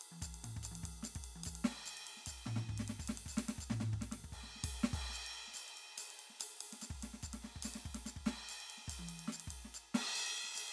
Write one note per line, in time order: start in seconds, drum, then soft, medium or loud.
0.01 ride medium
0.12 high tom soft
0.22 kick soft
0.22 ride medium
0.22 percussion loud
0.34 ride medium
0.41 floor tom medium
0.41 ride medium
0.41 percussion soft
0.57 kick soft
0.63 ride medium
0.63 percussion medium
0.72 high tom soft
0.76 ride medium
0.82 kick soft
0.82 ride medium
0.82 percussion soft
1.03 snare soft
1.03 ride medium
1.03 percussion medium
1.15 kick soft
1.15 ride medium
1.24 ride medium
1.36 high tom soft
1.44 kick soft
1.44 ride medium
1.44 percussion medium
1.55 ride medium
1.65 snare medium
1.65 ride medium
1.86 ride medium
1.86 percussion medium
1.97 ride medium
2.07 ride medium
2.17 snare soft
2.26 kick soft
2.26 ride medium
2.26 percussion medium
2.46 snare soft
2.46 floor tom medium
2.56 snare soft
2.56 floor tom medium
2.69 kick soft
2.78 snare soft
2.78 ride medium
2.88 snare soft
2.88 ride medium
3.00 kick soft
3.00 percussion medium
3.08 snare medium
3.08 ride medium
3.18 ride medium
3.26 kick soft
3.26 percussion medium
3.37 snare medium
3.37 ride medium
3.49 snare medium
3.49 ride medium
3.58 kick soft
3.58 percussion medium
3.70 snare medium
3.70 floor tom medium
3.80 snare medium
3.80 floor tom medium
3.93 kick soft
4.01 snare soft
4.01 ride medium
4.12 snare soft
4.12 ride medium
4.24 kick soft
4.32 kick soft
4.32 ride medium
4.43 snare soft
4.56 snare soft
4.64 kick medium
4.64 ride loud
4.74 ride soft
4.84 snare medium
4.93 kick medium
4.93 ride medium
5.10 snare soft
5.14 ride medium
5.14 percussion medium
5.27 ride medium
5.47 snare soft
5.54 ride medium
5.54 percussion medium
5.68 ride medium
5.77 ride medium
5.98 ride loud
5.98 percussion loud
6.11 ride medium
6.19 ride medium
6.30 snare soft
6.40 ride loud
6.40 percussion loud
6.60 ride loud
6.60 percussion soft
6.72 snare soft
6.72 ride medium
6.82 snare soft
6.82 ride medium
6.82 percussion medium
6.90 kick soft
7.00 snare soft
7.00 ride medium
7.00 percussion soft
7.14 snare soft
7.23 kick soft
7.23 percussion medium
7.33 snare soft
7.33 ride medium
7.41 snare soft
7.41 percussion soft
7.41 ride soft
7.56 kick soft
7.63 snare soft
7.63 ride loud
7.63 percussion loud
7.74 snare soft
7.74 ride medium
7.84 kick soft
7.84 percussion soft
7.95 snare soft
7.95 ride medium
8.06 snare soft
8.06 percussion medium
8.16 kick soft
8.26 snare medium
8.26 ride medium
8.49 ride medium
8.49 percussion medium
8.61 ride medium
8.69 ride medium
8.69 percussion soft
8.77 snare soft
8.88 kick soft
8.88 ride medium
8.88 percussion medium
8.99 high tom medium
9.09 ride medium
9.09 percussion soft
9.20 ride medium
9.28 snare medium
9.33 percussion loud
9.40 ride medium
9.47 kick soft
9.47 ride medium
9.65 snare soft
9.74 percussion loud
9.95 snare medium
9.95 percussion soft
9.95 ride loud
10.16 ride medium
10.16 percussion medium
10.27 ride medium
10.35 ride medium
10.35 percussion soft
10.44 snare soft
10.55 ride loud
10.55 percussion loud
10.68 ride medium